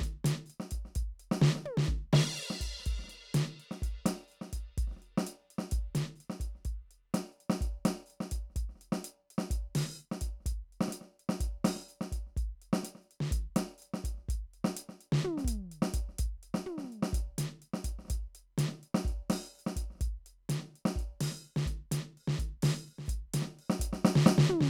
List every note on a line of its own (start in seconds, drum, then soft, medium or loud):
0.01 closed hi-hat medium
0.01 kick soft
0.25 closed hi-hat loud
0.25 snare medium
0.46 closed hi-hat soft
0.46 hi-hat pedal medium
0.60 snare soft
0.71 closed hi-hat medium
0.71 kick soft
0.86 snare soft
0.96 closed hi-hat medium
0.96 kick soft
1.02 kick soft
1.20 closed hi-hat soft
1.32 snare medium
1.42 snare loud
1.56 snare soft
1.66 high tom medium
1.78 snare medium
1.85 kick soft
1.85 hi-hat pedal medium
1.97 kick soft
2.13 snare loud
2.13 crash loud
2.38 closed hi-hat soft
2.51 snare soft
2.61 closed hi-hat medium
2.61 kick soft
2.80 snare soft
2.86 closed hi-hat medium
2.86 kick soft
3.00 snare soft
3.04 snare soft
3.09 snare soft
3.09 closed hi-hat medium
3.35 closed hi-hat loud
3.35 snare loud
3.60 closed hi-hat soft
3.71 snare soft
3.82 closed hi-hat medium
3.82 kick soft
3.90 kick soft
4.06 open hi-hat loud
4.06 snare medium
4.28 closed hi-hat soft
4.28 hi-hat pedal soft
4.42 snare soft
4.49 closed hi-hat medium
4.49 kick soft
4.49 snare soft
4.78 closed hi-hat medium
4.78 kick soft
4.84 kick soft
4.84 snare soft
4.92 snare soft
4.97 snare soft
5.02 closed hi-hat soft
5.18 snare medium
5.27 closed hi-hat medium
5.51 closed hi-hat soft
5.59 snare medium
5.72 closed hi-hat medium
5.72 kick soft
5.79 kick soft
5.95 closed hi-hat medium
5.95 snare medium
6.16 hi-hat pedal soft
6.21 closed hi-hat soft
6.30 snare soft
6.40 closed hi-hat medium
6.40 kick soft
6.55 snare soft
6.65 closed hi-hat medium
6.65 kick soft
6.91 closed hi-hat soft
7.14 closed hi-hat medium
7.14 snare medium
7.32 hi-hat pedal soft
7.41 closed hi-hat soft
7.50 snare medium
7.61 kick soft
7.61 closed hi-hat medium
7.86 closed hi-hat loud
7.86 snare medium
8.06 closed hi-hat soft
8.06 hi-hat pedal medium
8.21 snare medium
8.32 closed hi-hat medium
8.32 kick soft
8.50 snare soft
8.56 closed hi-hat medium
8.56 kick soft
8.65 kick soft
8.70 snare soft
8.76 snare soft
8.81 closed hi-hat soft
8.93 snare medium
9.05 closed hi-hat loud
9.31 closed hi-hat soft
9.38 snare medium
9.51 closed hi-hat medium
9.51 kick soft
9.75 open hi-hat loud
9.75 snare medium
9.95 hi-hat pedal soft
10.00 closed hi-hat soft
10.12 snare medium
10.21 closed hi-hat medium
10.21 kick soft
10.41 snare soft
10.46 closed hi-hat medium
10.46 kick soft
10.52 kick soft
10.73 closed hi-hat soft
10.81 snare medium
10.88 snare soft
10.93 closed hi-hat loud
11.01 snare soft
11.20 closed hi-hat soft
11.29 snare medium
11.41 closed hi-hat medium
11.41 kick soft
11.49 kick soft
11.65 open hi-hat loud
11.65 snare medium
11.76 snare soft
11.89 closed hi-hat soft
11.89 hi-hat pedal medium
12.01 snare medium
12.12 closed hi-hat medium
12.12 kick soft
12.27 snare soft
12.37 closed hi-hat medium
12.37 kick soft
12.62 closed hi-hat soft
12.73 snare medium
12.84 closed hi-hat loud
12.84 snare soft
12.95 snare soft
13.02 hi-hat pedal soft
13.11 closed hi-hat soft
13.21 snare medium
13.32 closed hi-hat medium
13.32 kick soft
13.38 kick soft
13.56 closed hi-hat loud
13.56 snare medium
13.78 hi-hat pedal medium
13.82 closed hi-hat soft
13.94 snare medium
14.04 closed hi-hat medium
14.04 kick soft
14.15 snare soft
14.18 snare soft
14.29 closed hi-hat medium
14.29 kick soft
14.35 kick soft
14.54 closed hi-hat soft
14.65 snare medium
14.75 closed hi-hat loud
14.75 snare soft
14.89 snare soft
15.01 closed hi-hat soft
15.13 snare loud
15.24 floor tom loud
15.38 snare soft
15.38 hi-hat pedal medium
15.45 closed hi-hat loud
15.45 kick soft
15.72 closed hi-hat soft
15.83 snare medium
15.94 closed hi-hat loud
15.94 kick soft
16.01 kick soft
16.09 snare soft
16.19 closed hi-hat loud
16.19 kick soft
16.26 kick soft
16.43 closed hi-hat soft
16.55 snare medium
16.66 floor tom medium
16.78 snare soft
16.85 snare soft
16.93 open hi-hat soft
17.03 snare medium
17.09 kick soft
17.09 hi-hat pedal soft
17.15 closed hi-hat medium
17.20 kick soft
17.39 closed hi-hat loud
17.39 snare medium
17.62 closed hi-hat soft
17.74 snare medium
17.85 closed hi-hat loud
17.85 kick soft
17.99 snare soft
18.05 snare soft
18.09 closed hi-hat loud
18.09 kick soft
18.09 snare soft
18.16 kick soft
18.35 closed hi-hat medium
18.58 closed hi-hat loud
18.58 snare medium
18.69 snare soft
18.83 closed hi-hat soft
18.95 snare medium
19.02 kick soft
19.02 hi-hat pedal soft
19.08 kick soft
19.08 closed hi-hat soft
19.30 open hi-hat loud
19.30 snare medium
19.56 hi-hat pedal medium
19.56 open hi-hat soft
19.67 snare medium
19.77 closed hi-hat medium
19.77 kick soft
19.91 snare soft
19.96 snare soft
19.99 closed hi-hat medium
19.99 kick soft
19.99 snare soft
20.08 kick soft
20.26 closed hi-hat soft
20.50 closed hi-hat loud
20.50 snare medium
20.60 snare soft
20.76 closed hi-hat soft
20.86 snare medium
20.93 kick soft
20.93 hi-hat pedal soft
20.99 closed hi-hat soft
21.21 open hi-hat loud
21.21 snare medium
21.32 snare soft
21.45 open hi-hat soft
21.57 snare medium
21.57 hi-hat pedal medium
21.66 kick soft
21.66 closed hi-hat medium
21.92 closed hi-hat loud
21.92 snare medium
22.18 open hi-hat soft
22.28 snare medium
22.38 kick soft
22.38 closed hi-hat medium
22.38 hi-hat pedal soft
22.63 open hi-hat loud
22.63 snare loud
22.88 open hi-hat soft
22.99 snare soft
23.06 closed hi-hat medium
23.06 kick soft
23.06 hi-hat pedal soft
23.34 open hi-hat loud
23.34 snare medium
23.42 snare soft
23.59 open hi-hat soft
23.70 snare medium
23.78 closed hi-hat loud
23.78 kick soft
23.78 hi-hat pedal soft
23.93 snare medium
24.05 snare loud
24.16 snare loud
24.22 hi-hat pedal medium
24.26 snare loud
24.38 snare loud
24.49 floor tom loud
24.61 snare medium